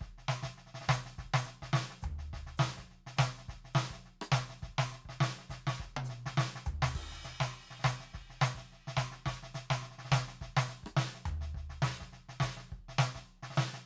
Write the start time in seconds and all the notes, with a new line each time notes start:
0.01 kick, snare
0.08 kick
0.18 snare
0.29 snare, hi-hat pedal
0.43 kick, snare
0.58 snare
0.67 snare
0.75 snare
0.81 snare
0.88 kick, snare, hi-hat pedal
1.06 snare
1.19 kick, snare
1.25 kick
1.34 snare
1.44 snare, hi-hat pedal
1.62 kick, snare
1.73 snare
1.90 snare
2.02 kick, floor tom, hi-hat pedal
2.12 kick
2.19 snare
2.33 kick, snare
2.41 kick
2.47 snare
2.58 snare, hi-hat pedal
2.77 kick, snare
2.91 snare
3.07 snare
3.18 kick, snare, hi-hat pedal
3.26 kick
3.38 snare
3.49 kick, snare
3.55 kick
3.65 snare
3.74 snare, hi-hat pedal
3.91 kick, snare
4.06 snare
4.22 cross-stick
4.32 kick, snare, hi-hat pedal
4.38 kick
4.50 snare
4.62 kick, snare
4.69 kick
4.73 kick
4.78 snare
4.89 snare, hi-hat pedal
5.06 kick, snare
5.21 snare
5.38 snare
5.50 kick, snare, hi-hat pedal
5.56 kick
5.67 snare
5.80 kick, snare
5.86 kick
5.91 kick
5.97 high tom
6.05 hi-hat pedal
6.09 snare
6.26 kick, snare
6.38 snare
6.56 snare
6.66 kick, floor tom, hi-hat pedal
6.74 kick
6.82 snare
6.95 kick, crash
7.06 kick
7.09 kick, snare
7.24 snare, hi-hat pedal
7.40 kick, snare
7.52 snare
7.60 snare
7.67 snare
7.71 snare
7.80 snare, hi-hat pedal
7.84 kick, snare
8.00 snare
8.14 kick, snare
8.21 kick
8.30 snare
8.41 snare, hi-hat pedal
8.55 kick, snare
8.73 snare
8.88 snare
8.97 kick, snare, hi-hat pedal
9.12 snare
9.26 kick, snare
9.33 kick
9.43 snare
9.54 snare, hi-hat pedal
9.71 kick, snare
9.82 snare
9.91 snare
9.98 snare
10.05 snare
10.11 kick, snare, hi-hat pedal
10.16 snare
10.28 snare
10.41 kick, snare
10.48 kick
10.57 snare
10.67 snare, hi-hat pedal
10.84 kick, cross-stick
10.97 snare
11.15 snare
11.26 kick, floor tom, hi-hat pedal
11.32 kick
11.34 kick
11.41 snare
11.55 kick, snare
11.62 kick
11.70 snare
11.82 snare, hi-hat pedal
12.00 kick, snare
12.13 snare
12.29 snare
12.40 kick, snare, hi-hat pedal
12.57 snare
12.69 kick, snare
12.78 kick
12.89 snare
12.99 snare, hi-hat pedal
13.15 kick, snare
13.27 snare
13.37 snare
13.43 snare
13.51 snare
13.56 snare, hi-hat pedal
13.74 snare